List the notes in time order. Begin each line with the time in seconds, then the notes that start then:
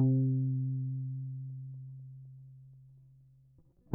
0.00 C3